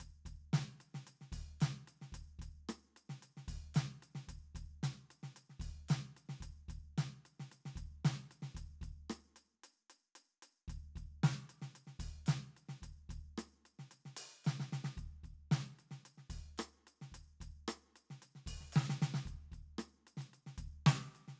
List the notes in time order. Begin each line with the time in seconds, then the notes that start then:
0.00 kick, percussion
0.25 kick, percussion
0.53 snare, percussion
0.58 snare
0.80 percussion
0.94 snare
1.07 percussion
1.21 snare
1.32 kick, percussion
1.60 snare, percussion
1.87 percussion
2.01 snare
2.12 kick, percussion
2.39 kick, percussion
2.69 cross-stick, percussion
2.96 percussion
3.09 snare
3.22 percussion
3.37 snare
3.48 kick, percussion
3.74 snare, percussion
3.76 percussion
4.02 percussion
4.15 snare
4.28 kick, percussion
4.55 kick, percussion
4.83 snare, percussion
5.10 percussion
5.23 snare
5.36 percussion
5.49 snare
5.59 kick, percussion
5.89 snare, percussion
6.17 percussion
6.29 snare
6.40 kick, percussion
6.68 kick, percussion
6.98 snare, percussion
7.25 percussion
7.40 snare
7.52 percussion
7.65 snare
7.76 kick, percussion
8.05 snare, percussion
8.31 percussion
8.42 snare
8.55 kick, percussion
8.81 kick, percussion
9.10 cross-stick, percussion
9.36 percussion
9.64 percussion
9.90 percussion
10.15 percussion
10.42 percussion
10.68 kick, percussion
10.96 kick, percussion
11.23 snare, percussion
11.49 percussion
11.62 snare
11.75 percussion
11.87 snare
11.99 kick, percussion
12.26 snare, percussion
12.29 percussion
12.56 percussion
12.69 snare
12.82 kick, percussion
13.09 kick, percussion
13.38 cross-stick, percussion
13.65 percussion
13.79 snare
13.91 percussion
14.05 snare
14.17 percussion
14.44 snare, percussion
14.60 snare
14.72 snare
14.84 snare
14.97 kick, percussion
15.23 kick, percussion
15.51 snare, percussion
15.79 percussion
15.91 snare
16.05 percussion
16.18 snare
16.30 kick, percussion
16.58 cross-stick, percussion
16.59 percussion
16.87 percussion
17.01 snare
17.12 kick, percussion
17.40 kick, percussion
17.68 cross-stick, percussion
17.96 percussion
18.10 snare
18.22 percussion
18.35 snare
18.46 kick, percussion
18.60 snare
18.72 snare, percussion
18.89 snare
19.02 snare
19.14 snare
19.25 kick, percussion
19.52 kick, percussion
19.78 cross-stick, percussion
20.07 percussion
20.17 snare, percussion
20.33 percussion
20.46 snare
20.58 kick, percussion
20.86 snare, percussion
20.93 snare
21.15 percussion
21.28 snare